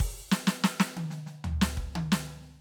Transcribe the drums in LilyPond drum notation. \new DrumStaff \drummode { \time 4/4 \tempo 4 = 92 <bd hho>8 sn16 sn16 sn16 sn16 tommh16 sn16 sn16 tomfh16 sn16 bd16 tommh16 sn8. | }